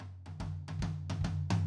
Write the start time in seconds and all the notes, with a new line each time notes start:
0.00 floor tom
0.26 floor tom, high tom
0.40 kick, floor tom, high tom
0.68 floor tom, high tom
0.79 kick, floor tom, high tom
1.10 floor tom, high tom
1.21 kick, floor tom, high tom
1.50 floor tom, high tom